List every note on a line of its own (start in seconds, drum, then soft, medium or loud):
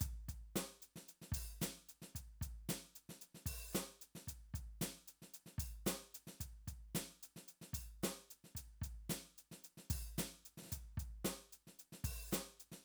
0.01 kick soft
0.01 closed hi-hat loud
0.29 kick soft
0.29 closed hi-hat medium
0.56 snare medium
0.56 closed hi-hat medium
0.82 closed hi-hat medium
0.96 snare soft
1.09 closed hi-hat medium
1.22 snare soft
1.32 kick soft
1.32 open hi-hat medium
1.61 snare medium
1.61 closed hi-hat medium
1.61 hi-hat pedal medium
1.89 closed hi-hat medium
2.02 snare soft
2.15 kick soft
2.15 closed hi-hat medium
2.42 kick soft
2.42 closed hi-hat medium
2.69 snare medium
2.69 closed hi-hat medium
2.96 closed hi-hat medium
3.09 snare soft
3.22 closed hi-hat medium
3.35 snare soft
3.46 kick soft
3.46 open hi-hat medium
3.73 snare medium
3.73 closed hi-hat loud
3.73 hi-hat pedal medium
4.01 closed hi-hat medium
4.15 snare soft
4.28 kick soft
4.28 closed hi-hat medium
4.54 kick soft
4.54 closed hi-hat medium
4.81 snare medium
4.81 closed hi-hat medium
5.08 closed hi-hat medium
5.22 snare soft
5.34 closed hi-hat medium
5.46 snare soft
5.58 kick soft
5.58 open hi-hat medium
5.86 snare medium
5.86 closed hi-hat loud
5.86 hi-hat pedal medium
6.15 closed hi-hat medium
6.27 snare soft
6.41 kick soft
6.41 closed hi-hat medium
6.68 kick soft
6.68 closed hi-hat medium
6.95 snare medium
6.95 closed hi-hat medium
7.23 closed hi-hat medium
7.36 snare soft
7.48 closed hi-hat medium
7.62 snare soft
7.74 kick soft
7.74 open hi-hat medium
8.03 snare medium
8.03 closed hi-hat medium
8.03 hi-hat pedal medium
8.31 closed hi-hat medium
8.44 snare soft
8.55 kick soft
8.55 closed hi-hat medium
8.82 kick soft
8.82 closed hi-hat medium
9.10 snare medium
9.10 closed hi-hat loud
9.38 closed hi-hat medium
9.52 snare soft
9.64 closed hi-hat medium
9.78 snare soft
9.90 kick soft
9.90 open hi-hat medium
10.18 snare medium
10.18 closed hi-hat medium
10.18 hi-hat pedal medium
10.45 closed hi-hat medium
10.58 snare soft
10.63 snare soft
10.67 snare soft
10.72 kick soft
10.72 closed hi-hat medium
10.98 kick soft
10.98 closed hi-hat medium
11.25 snare medium
11.25 closed hi-hat medium
11.53 closed hi-hat medium
11.67 snare soft
11.79 closed hi-hat medium
11.93 snare soft
12.04 kick soft
12.04 open hi-hat medium
12.32 snare medium
12.32 closed hi-hat loud
12.32 hi-hat pedal medium
12.60 closed hi-hat medium
12.72 snare soft